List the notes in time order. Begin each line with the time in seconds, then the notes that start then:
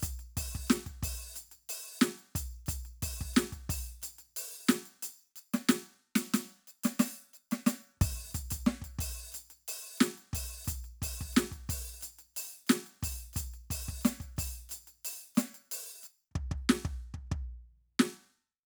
0.01 percussion
0.03 kick, percussion
0.20 percussion
0.38 kick, percussion
0.56 kick
0.68 snare, percussion
0.71 percussion
0.87 kick, percussion
1.03 kick, percussion
1.35 percussion
1.52 percussion
1.70 percussion
2.00 snare, percussion
2.02 percussion
2.18 percussion
2.36 kick, percussion
2.67 kick, percussion
2.69 percussion
2.86 percussion
3.03 kick, percussion
3.21 kick
3.34 snare, percussion
3.38 percussion
3.53 kick, percussion
3.70 kick, percussion
4.03 percussion
4.19 percussion
4.37 percussion
4.68 snare, percussion
4.70 percussion
4.86 percussion
5.03 percussion
5.37 percussion
5.54 snare, percussion
5.69 snare, percussion
6.16 snare, percussion
6.34 snare, percussion
6.68 percussion
6.84 snare, percussion
7.00 snare, percussion
7.34 percussion
7.52 snare, percussion
7.67 snare, percussion
7.98 kick
8.02 kick, percussion
8.32 kick, percussion
8.35 percussion
8.51 kick, percussion
8.67 snare
8.82 kick, percussion
8.99 kick, percussion
9.33 percussion
9.35 percussion
9.51 percussion
9.69 percussion
9.98 snare, percussion
10.02 percussion
10.18 percussion
10.34 kick, percussion
10.65 kick, percussion
10.68 percussion
10.85 percussion
11.03 kick, percussion
11.21 kick
11.34 snare, percussion
11.38 percussion
11.52 kick, percussion
11.67 kick, percussion
11.71 percussion
12.02 percussion
12.19 percussion
12.35 percussion
12.37 percussion
12.68 snare, percussion
12.70 percussion
12.87 percussion
13.02 kick, percussion
13.04 percussion
13.34 kick, percussion
13.37 percussion
13.54 percussion
13.71 kick, percussion
13.89 kick
14.02 snare, percussion
14.06 percussion
14.21 kick, percussion
14.37 kick, percussion
14.40 percussion
14.70 percussion
14.72 percussion
14.88 percussion
15.05 percussion
15.36 snare, percussion
15.38 percussion
15.55 percussion
15.72 percussion
16.04 percussion
16.32 kick
16.36 kick
16.52 kick
16.59 crash
16.70 snare
16.86 kick
17.15 kick
17.28 kick
17.32 kick
18.00 snare